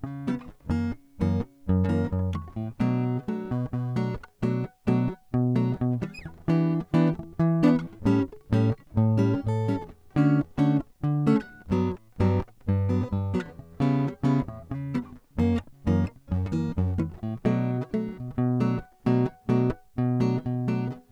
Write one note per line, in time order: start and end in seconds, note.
0.05 0.43 C#3
0.29 0.40 G3
0.29 0.43 B3
0.29 0.39 E4
0.71 0.94 F#2
0.71 0.96 D#3
0.71 0.97 A#3
0.71 0.98 C#4
1.22 1.51 F#2
1.22 1.46 E3
1.22 1.47 A#3
1.22 1.48 C#4
1.71 2.09 F#2
1.91 2.15 E3
1.91 2.14 A#3
1.91 2.11 C#4
2.14 2.54 F#2
2.36 2.50 D3
2.36 2.43 C#4
2.58 2.76 A2
2.81 3.23 B2
2.81 3.21 F#3
2.81 3.14 A3
2.81 3.09 D4
3.30 3.58 F#3
3.30 3.52 A3
3.30 3.56 D4
3.53 3.70 B2
3.75 4.20 B2
3.98 4.20 F#3
3.98 4.22 A3
3.98 4.21 D4
4.44 4.72 B2
4.44 4.73 F#3
4.44 4.67 A3
4.44 4.71 D4
4.88 5.18 B2
4.88 5.19 F#3
4.88 5.13 A3
4.88 5.16 D4
5.35 5.78 B2
5.57 5.74 F#3
5.57 5.80 A3
5.57 5.72 D4
5.83 6.01 B2
6.02 6.17 G3
6.02 6.23 D4
6.27 6.41 E3
6.49 6.87 E3
6.49 6.76 B3
6.49 6.84 D4
6.49 6.82 G4
6.95 7.17 E3
6.95 7.14 B3
6.95 7.18 D4
6.95 7.20 G4
7.21 7.36 E3
7.41 7.80 E3
7.64 7.84 B3
7.64 7.80 D4
7.64 7.78 G4
8.07 8.25 A2
8.07 8.29 G3
8.07 8.30 C#4
8.07 8.30 E4
8.54 8.79 A2
8.54 8.78 G3
8.54 8.73 C#4
8.54 8.75 E4
8.99 9.40 A2
9.19 9.47 G3
9.19 9.46 C#4
9.19 9.35 E4
9.48 9.79 A2
9.48 9.94 A4
9.70 9.81 G3
9.70 9.82 C#4
10.18 10.46 D3
10.18 10.44 A3
10.18 10.47 C#4
10.18 10.43 F#4
10.59 10.83 D3
10.59 10.84 A3
10.59 10.86 C#4
10.59 10.85 F#4
11.05 11.40 D3
11.28 11.42 A3
11.28 11.44 C#4
11.28 11.42 F#4
11.72 11.94 G2
11.72 11.99 F#3
11.72 12.02 B3
11.72 11.96 D4
12.22 12.48 G2
12.22 12.46 F#3
12.22 12.45 B3
12.22 12.47 D4
12.70 13.09 G2
12.90 13.06 F#3
12.90 13.13 B3
12.90 13.06 D4
13.14 13.38 G2
13.36 13.45 F#3
13.36 13.46 B3
13.36 13.42 D4
13.82 14.18 C#3
13.82 14.19 G3
13.82 14.13 B3
13.82 14.09 E4
14.25 14.45 C#3
14.25 14.46 G3
14.25 14.48 B3
14.25 14.48 E4
14.50 14.66 A2
14.73 15.05 C#3
14.96 15.03 G3
14.96 15.06 B3
14.96 15.03 E4
15.40 15.65 F#2
15.40 15.62 E3
15.40 15.65 A#3
15.40 15.63 C#4
15.88 16.11 F#2
15.88 16.07 E3
15.88 16.08 A#3
15.88 16.08 C#4
16.33 16.48 F#2
16.54 16.77 E3
16.54 16.77 A#3
16.54 16.77 C#4
16.80 17.19 F#2
17.00 17.09 E3
17.00 17.10 A3
17.00 17.15 C#4
17.25 17.41 A2
17.46 17.83 B2
17.46 17.84 F#3
17.46 17.81 A3
17.46 17.76 D4
17.84 18.12 B2
17.95 18.23 F#3
17.95 18.21 A3
17.95 18.21 D4
18.22 18.34 B2
18.40 18.85 B2
18.62 18.83 F#3
18.62 18.83 A3
18.62 18.85 D4
19.08 19.33 B2
19.08 19.31 F#3
19.08 19.31 A3
19.08 19.33 D4
19.50 19.77 B2
19.50 19.74 F#3
19.50 19.74 A3
19.50 19.77 D4
20.00 20.43 B2
20.22 20.41 F#3
20.22 20.44 A3
20.22 20.42 D4
20.48 20.96 B2
20.70 20.91 F#3
20.70 20.91 A3
20.70 20.90 D4